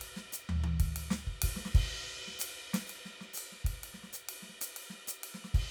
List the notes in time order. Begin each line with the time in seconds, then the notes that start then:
0.01 ride
0.16 snare
0.32 hi-hat pedal
0.49 floor tom
0.64 high tom
0.79 kick, ride
0.96 ride
1.10 snare
1.27 kick
1.42 kick, ride
1.56 snare
1.65 snare
1.74 kick, ride
2.27 snare
2.39 hi-hat pedal, ride
2.73 snare, ride
2.87 hi-hat pedal, ride
3.05 snare
3.21 snare
3.33 hi-hat pedal
3.37 ride
3.52 snare
3.64 kick, ride
3.83 ride
3.94 snare
4.03 snare
4.13 hi-hat pedal
4.29 ride
4.42 snare
4.49 snare
4.61 hi-hat pedal, ride
4.76 ride
4.81 hi-hat pedal
4.90 snare
5.07 hi-hat pedal
5.23 ride
5.28 hi-hat pedal
5.34 snare
5.44 snare
5.54 kick, ride